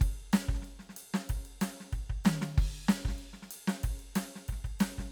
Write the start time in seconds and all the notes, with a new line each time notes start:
0.01 kick, crash
0.33 snare, hi-hat pedal, crash
0.49 kick
0.54 snare
0.62 snare, crash
0.79 snare
0.89 snare
0.97 hi-hat pedal, crash
1.14 snare
1.29 kick, crash
1.45 crash
1.61 snare, hi-hat pedal, crash
1.80 snare
1.93 kick, crash
2.10 kick
2.24 snare, hi-hat pedal, high tom
2.42 snare
2.58 kick, crash
2.89 snare, hi-hat pedal, crash
3.05 kick, snare
3.18 crash
3.33 snare
3.42 snare
3.51 hi-hat pedal, crash
3.68 snare
3.84 kick, crash
3.99 crash
4.15 snare, hi-hat pedal, crash
4.36 snare
4.48 kick, snare, crash
4.64 kick, crash
4.80 snare, hi-hat pedal, crash
4.98 kick, snare